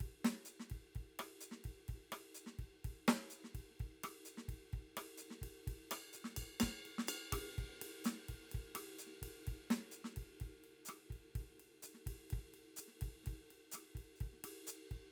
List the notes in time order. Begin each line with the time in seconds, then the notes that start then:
0.01 kick, ride
0.06 kick
0.25 snare, ride
0.46 hi-hat pedal
0.60 snare
0.71 kick, ride
0.77 kick
0.96 kick, ride
1.01 kick
1.20 cross-stick, ride
1.41 hi-hat pedal
1.52 snare
1.65 kick, ride
1.71 kick
1.89 kick, ride
1.95 kick
2.13 cross-stick, ride
2.35 hi-hat pedal
2.47 snare
2.59 kick, ride
2.64 kick
2.85 kick, ride
2.91 kick
3.08 snare, ride
3.31 hi-hat pedal
3.45 snare
3.55 kick, ride
3.60 kick
3.71 snare
3.80 kick, ride
3.86 kick
4.04 cross-stick, ride
4.26 hi-hat pedal
4.38 snare
4.49 kick, ride
4.54 kick
4.74 kick, ride
4.79 kick
4.98 cross-stick, ride
5.18 hi-hat pedal
5.23 ride
5.31 snare
5.42 kick, ride
5.47 kick
5.68 kick, ride
5.73 kick
5.92 cross-stick, ride bell
6.13 hi-hat pedal, ride
6.25 snare
6.37 kick, ride bell
6.43 kick
6.61 kick, snare, ride bell
6.86 ride
6.99 snare
7.08 hi-hat pedal, ride bell
7.33 kick, cross-stick, ride
7.38 kick
7.59 kick, ride
7.64 kick
7.75 snare
7.82 ride
8.05 snare, hi-hat pedal, ride
8.29 kick, ride
8.35 kick
8.41 snare
8.50 hi-hat pedal, ride
8.55 kick
8.60 kick
8.76 cross-stick, ride
8.99 hi-hat pedal
9.07 snare
9.11 snare
9.23 kick, ride
9.28 kick
9.48 kick, ride
9.53 kick
9.71 snare, ride
9.92 hi-hat pedal, ride
10.05 snare
10.17 kick, ride
10.23 kick
10.41 kick, ride
10.47 kick
10.64 ride
10.86 cross-stick, hi-hat pedal
10.90 ride
11.11 kick, ride
11.16 kick
11.36 kick, ride
11.41 kick
11.48 snare
11.56 snare, ride
11.83 hi-hat pedal, ride
11.95 snare
12.07 kick, ride
12.12 kick
12.31 kick, ride
12.39 kick
12.55 ride
12.77 hi-hat pedal, ride
12.88 snare
13.02 kick, ride
13.08 kick
13.24 kick, snare, ride
13.33 kick
13.51 ride
13.72 cross-stick, snare, hi-hat pedal, ride
13.96 kick, ride
14.01 kick
14.16 hi-hat pedal
14.21 kick, ride
14.27 kick
14.33 snare
14.45 cross-stick, ride
14.68 hi-hat pedal, ride
14.92 kick, ride
14.97 kick